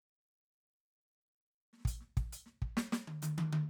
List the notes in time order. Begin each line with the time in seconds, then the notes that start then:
1.73 snare
1.77 snare
1.80 snare
1.85 closed hi-hat, kick
2.01 snare
2.17 kick, closed hi-hat
2.33 closed hi-hat
2.46 snare
2.62 kick
2.77 snare
2.92 snare
3.07 high tom
3.22 hi-hat pedal, high tom
3.38 high tom
3.53 high tom